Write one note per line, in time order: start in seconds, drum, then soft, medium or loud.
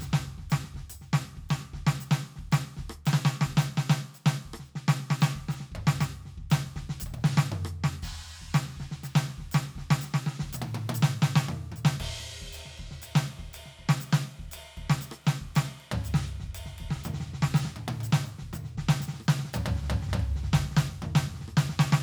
0.01 snare medium
0.01 percussion medium
0.13 snare loud
0.20 snare soft
0.25 snare soft
0.38 kick soft
0.38 snare soft
0.50 snare loud
0.50 percussion medium
0.64 snare soft
0.74 kick soft
0.74 snare soft
0.90 percussion loud
1.01 snare soft
1.13 snare loud
1.23 snare soft
1.35 kick soft
1.35 snare soft
1.49 snare loud
1.49 percussion soft
1.61 snare soft
1.74 kick soft
1.74 snare soft
1.87 snare loud
1.99 snare soft
1.99 percussion medium
2.11 snare loud
2.16 cross-stick soft
2.23 snare soft
2.36 kick soft
2.36 snare soft
2.46 kick soft
2.52 snare loud
2.52 percussion medium
2.64 snare soft
2.77 kick soft
2.77 snare soft
2.90 cross-stick medium
3.06 snare loud
3.06 percussion loud
3.13 snare loud
3.25 snare loud
3.41 snare loud
3.46 kick soft
3.57 snare loud
3.57 percussion medium
3.77 snare loud
3.90 snare loud
4.14 percussion medium
4.26 snare loud
4.45 kick soft
4.54 cross-stick medium
4.59 snare soft
4.65 percussion soft
4.75 snare medium
4.88 snare loud
5.00 snare soft
5.10 snare loud
5.21 snare loud
5.21 percussion medium
5.35 kick soft
5.35 snare soft
5.49 snare medium
5.49 percussion medium
5.60 snare soft
5.72 kick soft
5.72 floor tom medium
5.87 snare loud
6.01 snare loud
6.01 percussion medium
6.26 snare soft
6.38 kick soft
6.38 snare soft
6.50 snare loud
6.50 percussion medium
6.65 snare soft
6.76 kick soft
6.76 snare medium
6.82 kick soft
6.84 kick soft
6.89 snare medium
7.00 kick medium
7.00 percussion loud
7.06 kick soft
7.06 high tom medium
7.13 kick soft
7.13 high tom medium
7.24 snare loud
7.37 snare loud
7.52 mid tom loud
7.65 cross-stick medium
7.84 snare loud
8.03 kick medium
8.03 percussion medium
8.03 crash loud
8.09 kick soft
8.12 kick soft
8.42 kick soft
8.54 snare loud
8.54 percussion medium
8.68 snare soft
8.77 kick soft
8.77 snare medium
8.91 snare medium
9.03 snare medium
9.03 percussion medium
9.15 snare loud
9.27 snare soft
9.38 kick soft
9.38 snare soft
9.45 kick soft
9.52 snare loud
9.52 percussion medium
9.67 snare soft
9.75 kick soft
9.75 snare soft
9.91 snare loud
10.01 snare medium
10.01 percussion loud
10.14 snare loud
10.26 snare medium
10.39 kick soft
10.39 snare medium
10.50 kick soft
10.50 percussion loud
10.55 high tom medium
10.62 high tom loud
10.75 high tom loud
10.89 high tom loud
10.94 percussion loud
11.03 snare loud
11.22 snare loud
11.36 snare loud
11.49 mid tom loud
11.72 mid tom medium
11.76 percussion medium
11.85 snare loud
12.00 kick medium
12.00 ride loud
12.06 kick soft
12.11 kick soft
12.20 cross-stick soft
12.20 percussion soft
12.34 snare soft
12.38 kick soft
12.38 snare soft
12.53 ride bell medium
12.53 percussion medium
12.65 snare soft
12.78 kick soft
12.78 ride soft
12.85 kick soft
12.91 snare soft
13.02 ride medium
13.02 percussion medium
13.15 snare loud
13.28 ride soft
13.38 kick soft
13.38 snare soft
13.53 ride medium
13.53 percussion medium
13.66 snare soft
13.79 kick soft
13.79 ride soft
13.89 snare loud
14.01 ride medium
14.01 percussion medium
14.13 snare loud
14.26 ride soft
14.39 kick soft
14.52 ride loud
14.52 percussion loud
14.77 kick soft
14.77 ride soft
14.83 kick soft
14.90 snare loud
15.01 ride medium
15.01 percussion medium
15.11 cross-stick medium
15.22 ride soft
15.22 percussion soft
15.27 snare loud
15.41 kick soft
15.55 snare loud
15.55 ride medium
15.55 percussion medium
15.80 ride soft
15.92 floor tom loud
16.04 ride medium
16.04 percussion medium
16.14 snare loud
16.26 ride soft
16.26 percussion soft
16.40 kick soft
16.40 snare soft
16.55 ride medium
16.55 percussion medium
16.66 snare soft
16.78 kick soft
16.78 ride medium
16.86 kick soft
16.91 snare medium
17.04 mid tom loud
17.04 percussion medium
17.14 snare medium
17.20 snare medium
17.26 snare soft
17.34 snare medium
17.42 kick soft
17.42 snare loud
17.54 snare loud
17.54 percussion medium
17.65 snare medium
17.76 high tom medium
17.88 high tom loud
18.01 high tom medium
18.01 percussion medium
18.12 snare loud
18.24 high tom medium
18.24 percussion soft
18.39 kick soft
18.39 snare soft
18.53 mid tom medium
18.53 percussion medium
18.64 snare soft
18.77 kick soft
18.77 snare medium
18.89 snare loud
19.00 snare medium
19.00 percussion medium
19.08 snare medium
19.14 snare soft
19.20 cross-stick medium
19.20 percussion soft
19.28 snare loud
19.39 snare medium
19.45 snare medium
19.54 percussion medium
19.54 floor tom loud
19.66 floor tom loud
19.76 snare soft
19.83 snare soft
19.90 floor tom loud
20.02 snare medium
20.08 snare soft
20.13 floor tom loud
20.20 floor tom medium
20.36 snare soft
20.43 snare soft
20.53 kick soft
20.53 snare loud
20.58 kick soft
20.65 snare soft
20.71 snare soft
20.77 kick soft
20.77 snare loud
20.88 snare soft
20.93 snare soft
21.02 mid tom loud
21.15 snare loud
21.27 snare soft
21.34 snare soft
21.39 snare soft
21.41 snare soft
21.48 cross-stick medium
21.52 cross-stick soft
21.57 snare loud
21.69 snare medium
21.79 snare loud
21.92 snare loud